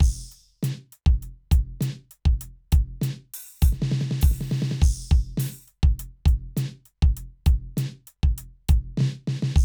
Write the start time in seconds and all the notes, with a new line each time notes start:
0.01 kick, crash
0.32 closed hi-hat
0.63 closed hi-hat, snare
0.93 closed hi-hat
1.07 kick
1.23 closed hi-hat
1.52 closed hi-hat, kick
1.81 closed hi-hat, snare
2.12 closed hi-hat
2.26 kick
2.42 closed hi-hat
2.73 closed hi-hat, kick
3.02 closed hi-hat, snare
3.34 open hi-hat
3.62 open hi-hat, kick
3.67 hi-hat pedal
3.73 snare
3.83 snare
3.92 snare
4.01 snare, hi-hat pedal
4.12 snare
4.22 open hi-hat, kick
4.32 snare
4.41 snare
4.52 snare
4.63 snare
4.72 snare
4.82 kick, crash
5.12 kick, snare
5.38 open hi-hat, snare
5.68 closed hi-hat
5.84 kick, snare
6.00 closed hi-hat
6.26 closed hi-hat, kick, snare
6.57 closed hi-hat, snare
6.86 closed hi-hat
7.03 kick, snare
7.17 closed hi-hat
7.47 closed hi-hat, kick
7.78 closed hi-hat, snare
8.08 closed hi-hat
8.24 kick
8.38 closed hi-hat
8.69 closed hi-hat, kick
8.98 snare
9.01 snare
9.28 snare
9.43 snare
9.56 kick, crash